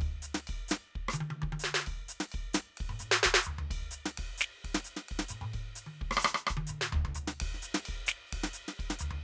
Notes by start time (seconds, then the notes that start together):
0.01 kick, ride bell
0.07 kick
0.22 hi-hat pedal, ride
0.35 snare
0.44 hi-hat pedal, ride bell
0.49 kick
0.57 kick
0.68 snare, hi-hat pedal
0.96 kick
1.03 kick
1.09 cross-stick
1.13 hi-hat pedal, high tom
1.21 high tom
1.30 high tom
1.42 kick, high tom
1.49 kick, high tom
1.60 hi-hat pedal
1.64 snare
1.74 snare
1.80 snare
1.87 kick, ride bell
2.09 hi-hat pedal, ride
2.20 snare
2.29 hi-hat pedal, ride bell
2.34 kick
2.40 kick
2.42 kick
2.54 snare, hi-hat pedal
2.75 hi-hat pedal, ride
2.80 kick
2.87 kick, mid tom
2.99 hi-hat pedal, mid tom
3.12 snare
3.20 snare, hi-hat pedal
3.26 kick
3.32 kick, snare
3.43 floor tom, hi-hat pedal
3.59 floor tom
3.71 kick, ride bell
3.79 kick
3.91 hi-hat pedal
3.95 ride
4.06 snare
4.13 hi-hat pedal
4.18 kick, ride
4.38 snare, hi-hat pedal
4.59 hi-hat pedal
4.65 kick, ride
4.75 snare
4.85 hi-hat pedal, ride
4.97 snare
5.09 kick, ride
5.19 snare
5.29 hi-hat pedal, mid tom
5.41 mid tom
5.54 kick, ride bell
5.76 hi-hat pedal, ride
5.87 high tom
6.01 kick, high tom
6.11 cross-stick
6.17 cross-stick
6.22 cross-stick, hi-hat pedal
6.35 cross-stick
6.47 kick, cross-stick
6.57 kick, high tom
6.67 hi-hat pedal, mid tom
6.81 snare
6.93 kick, floor tom
7.05 floor tom
7.15 floor tom, hi-hat pedal
7.28 snare
7.40 kick, ride
7.49 kick
7.51 kick, snare
7.62 hi-hat pedal, ride
7.75 snare
7.82 hi-hat pedal, ride bell
7.89 kick
8.07 snare, hi-hat pedal
8.27 hi-hat pedal
8.33 kick, ride
8.40 kick, snare
8.53 hi-hat pedal, ride
8.68 snare
8.75 hi-hat pedal
8.79 kick, ride bell
8.90 snare
8.99 floor tom, hi-hat pedal
9.11 floor tom